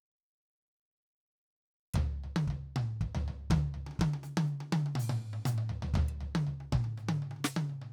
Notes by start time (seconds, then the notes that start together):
1.94 kick, floor tom, percussion
2.24 floor tom
2.36 high tom
2.48 kick, floor tom
2.76 mid tom
3.01 kick, floor tom
3.15 floor tom
3.28 floor tom
3.50 kick, floor tom, high tom
3.74 floor tom
3.87 high tom
3.91 high tom
3.95 kick, high tom
4.14 high tom
4.23 hi-hat pedal, high tom
4.37 high tom
4.46 hi-hat pedal
4.60 high tom
4.72 high tom
4.86 high tom
4.95 hi-hat pedal, mid tom
5.09 mid tom
5.33 mid tom
5.45 hi-hat pedal, mid tom
5.58 mid tom
5.69 floor tom
5.82 floor tom
5.94 kick, floor tom
6.08 percussion
6.21 floor tom
6.35 high tom
6.47 floor tom
6.60 high tom
6.72 kick, mid tom
6.84 high tom
6.97 hi-hat pedal, mid tom
7.09 high tom
7.22 mid tom
7.31 high tom
7.36 high tom
7.44 snare, hi-hat pedal
7.56 high tom
7.69 mid tom
7.82 mid tom